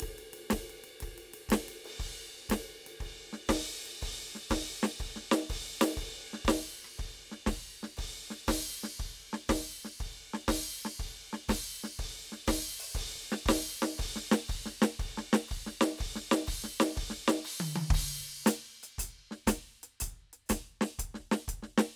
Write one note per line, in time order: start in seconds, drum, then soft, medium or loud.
0.01 kick medium
0.01 ride loud
0.19 ride medium
0.34 ride medium
0.51 kick soft
0.51 snare loud
0.51 hi-hat pedal soft
0.51 ride loud
0.71 ride medium
0.85 ride medium
1.01 kick soft
1.01 ride medium
1.19 ride medium
1.35 ride medium
1.50 kick soft
1.50 snare loud
1.50 hi-hat pedal soft
1.50 ride loud
1.69 ride medium
1.86 ride medium
2.00 kick medium
2.00 crash medium
2.50 kick medium
2.50 snare loud
2.50 hi-hat pedal soft
2.50 ride loud
2.87 ride medium
3.01 kick medium
3.01 ride medium
3.34 snare medium
3.48 kick medium
3.48 snare loud
3.48 hi-hat pedal soft
3.48 ride loud
3.87 ride medium
4.03 kick medium
4.03 ride loud
4.36 snare soft
4.50 kick medium
4.50 snare loud
4.50 hi-hat pedal medium
4.50 ride loud
4.84 snare loud
5.00 kick medium
5.00 ride medium
5.17 snare soft
5.32 snare loud
5.51 kick medium
5.51 hi-hat pedal soft
5.51 ride loud
5.82 snare loud
5.82 ride loud
5.98 kick medium
5.98 ride medium
6.34 snare medium
6.46 kick medium
6.46 snare loud
6.46 hi-hat pedal medium
6.46 crash medium
6.85 cross-stick soft
6.99 kick medium
6.99 ride medium
7.32 snare soft
7.47 kick medium
7.47 snare loud
7.47 hi-hat pedal medium
7.47 crash medium
7.84 snare medium
7.98 kick medium
7.98 ride loud
8.31 snare medium
8.48 kick medium
8.48 snare loud
8.48 hi-hat pedal medium
8.48 crash loud
8.84 snare medium
8.99 kick medium
8.99 ride medium
9.34 snare medium
9.49 kick medium
9.49 snare loud
9.49 hi-hat pedal medium
9.49 crash loud
9.86 snare soft
10.00 kick medium
10.00 ride medium
10.34 snare medium
10.49 kick medium
10.49 snare loud
10.49 hi-hat pedal medium
10.49 crash loud
10.86 snare medium
11.00 kick medium
11.00 ride medium
11.34 snare medium
11.49 kick medium
11.49 snare loud
11.49 hi-hat pedal medium
11.49 crash loud
11.84 snare medium
12.00 kick medium
12.00 ride medium
12.33 snare soft
12.47 kick medium
12.47 snare loud
12.47 hi-hat pedal medium
12.47 crash loud
12.80 open hi-hat medium
12.94 kick medium
12.94 hi-hat pedal soft
12.94 ride loud
13.16 kick soft
13.33 snare medium
13.47 kick medium
13.47 snare loud
13.47 crash loud
13.83 snare loud
13.99 kick medium
13.99 hi-hat pedal soft
13.99 ride loud
14.17 snare medium
14.32 snare loud
14.49 kick medium
14.49 hi-hat pedal soft
14.49 crash medium
14.66 snare medium
14.83 snare loud
15.00 kick medium
15.00 hi-hat pedal soft
15.00 ride medium
15.18 snare medium
15.34 snare loud
15.49 kick medium
15.49 hi-hat pedal soft
15.49 crash medium
15.67 snare medium
15.82 snare loud
15.99 kick medium
15.99 hi-hat pedal soft
15.99 ride medium
16.16 snare medium
16.32 snare loud
16.48 kick medium
16.48 hi-hat pedal soft
16.48 crash loud
16.65 snare medium
16.81 snare loud
16.97 kick medium
16.97 hi-hat pedal soft
16.97 ride medium
17.11 snare medium
17.18 kick soft
17.29 snare loud
17.45 crash loud
17.61 high tom loud
17.77 high tom loud
17.91 kick loud
17.91 crash loud
18.45 closed hi-hat loud
18.45 snare loud
18.45 hi-hat pedal medium
18.84 closed hi-hat medium
18.99 closed hi-hat loud
18.99 kick medium
19.32 snare medium
19.48 closed hi-hat loud
19.48 kick medium
19.48 snare loud
19.84 closed hi-hat medium
20.01 closed hi-hat loud
20.01 kick medium
20.34 closed hi-hat medium
20.47 closed hi-hat loud
20.47 snare loud
20.47 hi-hat pedal soft
20.51 kick medium
20.82 snare loud
21.00 kick medium
21.00 closed hi-hat loud
21.15 snare soft
21.21 kick soft
21.32 snare loud
21.49 kick medium
21.49 closed hi-hat loud
21.64 snare soft
21.79 snare loud